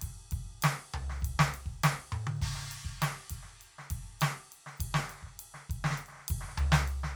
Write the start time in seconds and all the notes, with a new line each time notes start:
0.01 kick, snare, hi-hat pedal, ride
0.05 snare
0.14 kick
0.32 kick, ride
0.45 kick
0.62 snare, hi-hat pedal, ride
0.74 snare
0.94 floor tom
1.10 snare
1.20 kick, hi-hat pedal
1.25 ride
1.29 kick
1.40 snare
1.54 ride
1.66 kick
1.83 snare, hi-hat pedal, ride
1.95 snare
2.12 mid tom
2.27 high tom
2.36 hi-hat pedal
2.42 kick, crash
2.48 kick
2.56 snare
2.62 snare
2.69 snare, ride
2.85 kick
3.02 snare, hi-hat pedal, ride
3.15 snare
3.30 kick, ride
3.43 snare
3.62 hi-hat pedal, ride
3.79 snare
3.91 kick, ride
3.98 kick
4.20 snare, hi-hat pedal, ride
4.53 ride
4.67 snare
4.77 kick, hi-hat pedal, ride
4.87 kick
4.90 kick
4.95 snare
4.99 cross-stick
5.03 snare
5.09 snare, ride
5.13 snare
5.16 snare
5.21 kick, snare
5.27 snare
5.40 hi-hat pedal, ride
5.54 snare
5.70 kick, ride
5.76 kick
5.85 snare
5.91 snare
5.98 hi-hat pedal, ride
6.07 snare, ride
6.13 snare
6.16 snare
6.20 snare
6.25 snare, ride
6.31 kick
6.38 kick, snare
6.44 kick
6.49 snare
6.58 floor tom, hi-hat pedal
6.72 snare
6.88 ride
7.04 snare